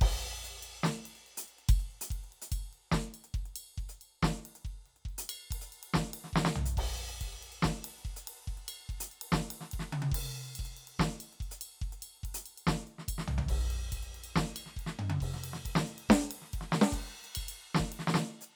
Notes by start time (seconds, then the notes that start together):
0.01 kick, crash
0.44 hi-hat pedal
0.62 ride bell
0.83 snare, hi-hat pedal
1.06 ride
1.15 closed hi-hat
1.26 ride
1.37 closed hi-hat
1.48 ride bell
1.58 closed hi-hat
1.69 kick, ride bell
1.80 closed hi-hat
1.90 ride
2.01 closed hi-hat
2.10 kick, ride
2.24 closed hi-hat
2.32 ride
2.42 closed hi-hat
2.52 kick, ride bell
2.73 ride
2.92 kick, snare
3.14 ride bell
3.24 closed hi-hat
3.34 kick, ride
3.46 closed hi-hat
3.56 ride bell
3.78 kick, ride
3.89 closed hi-hat
4.01 ride bell
4.23 kick, snare
4.45 ride
4.55 closed hi-hat
4.65 kick, ride
4.86 ride, floor tom
4.96 closed hi-hat
5.05 kick, ride
5.18 closed hi-hat
5.29 ride bell
5.51 kick, ride
5.61 closed hi-hat
5.72 ride bell
5.83 ride
5.94 kick, snare
6.13 ride
6.24 snare
6.33 kick, snare
6.45 snare
6.56 floor tom
6.66 closed hi-hat
6.77 kick, crash
6.98 ride
7.09 closed hi-hat
7.21 kick, ride
7.32 closed hi-hat
7.43 ride
7.52 ride bell
7.62 kick, snare
7.84 ride
7.98 closed hi-hat
8.05 kick, ride
8.16 closed hi-hat
8.27 ride
8.37 closed hi-hat
8.47 kick, ride
8.57 closed hi-hat
8.68 ride bell
8.80 closed hi-hat
8.89 kick, ride
9.00 closed hi-hat
9.11 ride bell
9.21 ride
9.32 kick, snare
9.50 ride
9.61 snare
9.71 kick, ride
9.79 snare
9.93 high tom
10.02 high tom
10.12 kick, crash
10.25 closed hi-hat
10.36 ride
10.45 closed hi-hat
10.55 kick, ride bell
10.65 closed hi-hat
10.77 ride
10.87 ride
10.99 kick, snare
11.20 ride bell
11.33 closed hi-hat
11.40 kick, ride bell
11.51 closed hi-hat
11.61 ride bell
11.82 kick, ride
11.92 closed hi-hat
12.02 ride bell
12.17 closed hi-hat
12.23 kick, ride
12.34 closed hi-hat
12.46 ride bell
12.58 ride bell
12.67 kick, snare
12.87 snare, ride
12.98 snare
13.08 kick, ride bell
13.18 snare
13.28 floor tom
13.38 floor tom
13.49 kick, crash
13.61 closed hi-hat
13.70 ride
13.80 closed hi-hat
13.92 kick, ride bell
14.03 closed hi-hat
14.15 ride
14.24 ride bell
14.36 kick, snare
14.56 ride bell
14.66 snare
14.76 kick, ride
14.86 snare
14.99 mid tom
15.10 high tom
15.20 kick, crash
15.34 snare
15.44 ride
15.53 snare
15.65 kick, ride
15.75 snare
15.87 ride
15.98 ride
16.09 kick, snare
16.31 ride
16.42 snare
16.53 kick, ride
16.61 snare
16.72 snare
16.81 snare
16.92 kick, crash
17.05 closed hi-hat
17.24 closed hi-hat
17.35 kick, ride bell
17.48 ride bell
17.75 snare
17.80 kick
17.92 ride
17.99 snare
18.07 snare
18.14 snare
18.41 hi-hat pedal